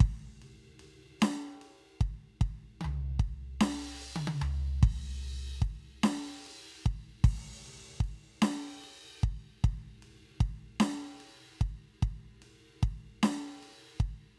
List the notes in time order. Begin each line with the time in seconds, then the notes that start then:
0.01 open hi-hat, kick, ride
0.42 ride
0.80 ride
1.21 snare, hi-hat pedal, ride
1.62 ride
2.01 kick, ride
2.42 kick, ride
2.81 floor tom, high tom
3.20 kick, ride
3.61 snare, crash
4.01 hi-hat pedal
4.16 high tom
4.28 high tom
4.42 floor tom, hi-hat pedal
4.83 kick, ride, crash
5.27 ride
5.62 kick, ride
6.04 snare, crash
6.47 ride
6.86 kick, ride
7.25 open hi-hat, kick, ride
7.67 ride
8.01 kick, ride
8.38 hi-hat pedal
8.43 snare, crash
8.84 ride
9.24 kick, ride
9.64 kick, ride
10.03 ride
10.41 kick, ride
10.80 snare, crash
11.21 ride
11.62 kick, ride
12.03 kick, ride
12.43 ride
12.83 kick, ride
13.23 snare, crash
13.63 ride
14.01 kick, ride